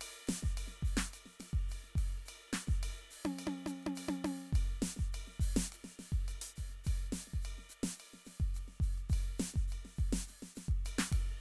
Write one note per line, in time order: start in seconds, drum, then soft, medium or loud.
0.01 hi-hat pedal medium
0.01 ride bell loud
0.28 snare medium
0.28 hi-hat pedal medium
0.28 ride medium
0.43 kick soft
0.43 snare soft
0.57 hi-hat pedal medium
0.57 ride bell medium
0.68 snare soft
0.83 kick soft
0.83 hi-hat pedal medium
0.83 ride soft
0.97 snare medium
1.13 hi-hat pedal medium
1.13 ride bell medium
1.26 snare soft
1.40 snare soft
1.40 hi-hat pedal medium
1.40 ride loud
1.54 kick soft
1.54 ride soft
1.69 hi-hat pedal medium
1.69 ride bell medium
1.84 snare soft
1.96 kick medium
1.96 hi-hat pedal medium
1.96 ride medium
2.13 ride soft
2.26 hi-hat pedal medium
2.26 ride bell medium
2.53 snare medium
2.53 hi-hat pedal medium
2.53 ride medium
2.68 kick medium
2.68 snare soft
2.83 hi-hat pedal medium
2.83 ride bell medium
3.11 hi-hat pedal medium
3.11 ride soft
3.25 high tom loud
3.25 ride soft
3.39 hi-hat pedal medium
3.39 ride bell medium
3.47 high tom loud
3.67 hi-hat pedal medium
3.67 high tom medium
3.67 ride bell soft
3.83 high tom loud
3.83 ride soft
3.96 hi-hat pedal medium
3.96 ride bell medium
4.09 open hi-hat soft
4.09 high tom loud
4.25 hi-hat pedal medium
4.25 high tom loud
4.25 ride medium
4.41 ride soft
4.53 kick medium
4.53 hi-hat pedal medium
4.53 ride bell medium
4.82 snare medium
4.82 hi-hat pedal soft
4.82 ride bell soft
4.96 kick soft
4.96 snare soft
4.96 ride soft
5.13 hi-hat pedal soft
5.13 ride bell medium
5.28 snare soft
5.40 kick medium
5.40 hi-hat pedal loud
5.40 ride soft
5.56 snare medium
5.56 ride soft
5.72 hi-hat pedal medium
5.72 ride loud
5.85 snare soft
5.99 snare soft
5.99 hi-hat pedal medium
5.99 ride soft
6.12 kick soft
6.12 ride soft
6.28 hi-hat pedal medium
6.28 ride bell medium
6.42 open hi-hat loud
6.56 kick soft
6.56 hi-hat pedal medium
6.56 ride bell soft
6.70 snare soft
6.70 ride soft
6.84 kick soft
6.84 hi-hat pedal medium
6.84 ride bell medium
7.13 snare medium
7.13 hi-hat pedal medium
7.13 ride bell soft
7.28 snare soft
7.28 ride soft
7.34 kick soft
7.42 hi-hat pedal medium
7.42 ride bell medium
7.59 snare soft
7.70 hi-hat pedal medium
7.70 ride soft
7.84 snare medium
7.84 ride soft
7.97 hi-hat pedal medium
7.97 ride bell medium
8.14 snare soft
8.25 snare soft
8.25 hi-hat pedal medium
8.25 ride soft
8.40 kick soft
8.40 ride soft
8.55 hi-hat pedal medium
8.55 ride medium
8.68 snare soft
8.81 kick medium
8.81 hi-hat pedal medium
8.81 ride soft
8.98 ride soft
9.10 kick medium
9.10 hi-hat pedal medium
9.10 ride soft
9.10 ride bell medium
9.39 snare medium
9.39 hi-hat pedal medium
9.39 ride bell soft
9.54 kick soft
9.54 snare soft
9.54 ride soft
9.68 hi-hat pedal medium
9.73 ride bell medium
9.85 snare soft
9.96 kick soft
9.96 hi-hat pedal soft
10.00 ride soft
10.13 snare medium
10.13 ride soft
10.27 snare soft
10.27 hi-hat pedal medium
10.27 ride soft
10.43 snare soft
10.55 snare soft
10.55 hi-hat pedal medium
10.55 ride soft
10.69 kick medium
10.69 ride soft
10.85 hi-hat pedal medium
10.85 ride bell medium
10.99 snare medium
11.12 kick medium
11.12 hi-hat pedal medium
11.12 ride loud